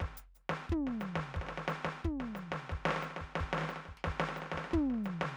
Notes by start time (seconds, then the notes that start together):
0.01 kick, snare
0.18 closed hi-hat
0.36 snare, hi-hat pedal
0.50 kick, snare
0.70 kick, floor tom
0.88 snare
1.01 snare, hi-hat pedal
1.16 kick, snare
1.35 kick, snare
1.42 snare
1.47 snare
1.49 snare
1.58 snare
1.69 snare, hi-hat pedal
1.85 kick, snare
2.05 kick, floor tom
2.21 snare
2.36 snare, hi-hat pedal
2.51 kick, snare
2.70 kick, snare
2.86 snare
2.89 snare
2.91 snare
2.97 snare
3.03 snare, hi-hat pedal
3.11 snare
3.17 snare
3.22 kick
3.33 snare
3.36 snare
3.41 kick
3.54 snare
3.59 snare
3.62 snare
3.64 snare
3.70 snare, hi-hat pedal
3.77 snare
3.86 kick, snare
3.98 snare
4.05 kick, snare
4.21 snare
4.29 snare
4.37 snare, hi-hat pedal
4.43 snare
4.47 snare
4.52 kick, snare
4.58 snare
4.65 snare
4.72 kick, snare, floor tom
4.91 snare
4.95 snare
4.99 snare
5.04 snare, hi-hat pedal
5.21 kick, snare